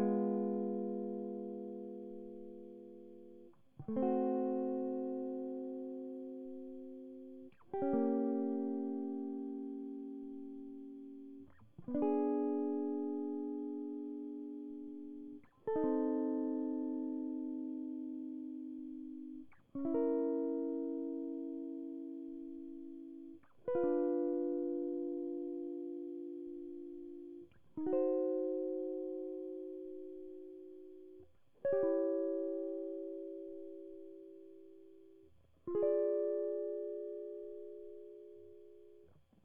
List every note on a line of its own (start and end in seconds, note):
0.00 3.50 G#3
3.89 6.45 A3
3.97 7.51 C4
4.03 7.51 F#4
7.74 11.47 G4
7.83 11.47 C#4
7.94 11.43 A#3
11.89 15.40 B3
11.95 15.40 D4
12.03 15.40 G#4
15.68 18.38 A4
15.76 19.46 D#4
15.85 19.46 C4
19.76 23.38 C#4
19.86 23.39 E4
19.95 22.35 A#4
23.69 26.65 B4
23.76 27.47 F4
23.84 27.47 D4
27.78 31.25 D#4
27.87 31.26 F#4
27.93 30.59 C5
31.66 34.32 C#5
31.73 35.29 G4
31.84 35.29 E4
35.68 39.10 F4
35.76 39.08 G#4
35.83 38.38 D5